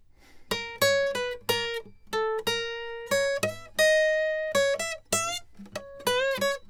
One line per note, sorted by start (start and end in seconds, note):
0.51 0.79 A#4
0.82 1.19 C#5
1.15 1.39 B4
1.49 1.82 A#4
2.13 2.41 A4
2.47 3.09 A#4
3.12 3.40 C#5
3.43 3.69 E5
3.79 4.53 D#5
4.55 4.76 C#5
4.80 4.97 E5
5.13 5.33 E5
6.07 6.27 B4
6.21 6.39 C#5
6.42 6.60 C#5